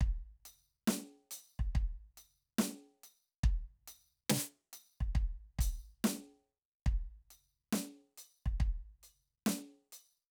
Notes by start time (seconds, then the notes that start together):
0.01 kick
0.46 closed hi-hat
0.88 snare
1.31 closed hi-hat
1.59 kick
1.75 kick
2.18 closed hi-hat
2.59 snare
3.04 closed hi-hat
3.44 kick
3.88 closed hi-hat
4.30 snare
4.73 closed hi-hat
5.01 kick
5.15 kick
5.59 closed hi-hat, kick
6.04 snare
6.86 kick, ride
7.31 closed hi-hat
7.73 snare
8.18 closed hi-hat
8.46 kick
8.60 kick
9.03 closed hi-hat
9.47 snare
9.93 closed hi-hat